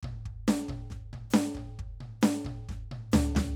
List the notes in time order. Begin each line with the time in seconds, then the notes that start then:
0.03 kick, mid tom
0.25 kick, mid tom
0.47 snare, hi-hat pedal
0.68 kick, mid tom
0.90 kick, snare
1.13 kick, mid tom
1.30 snare, hi-hat pedal
1.55 kick, mid tom
1.79 kick
2.00 mid tom
2.21 snare, hi-hat pedal
2.44 kick, mid tom
2.69 kick, snare
2.91 mid tom
3.12 snare, floor tom, hi-hat pedal
3.35 snare, floor tom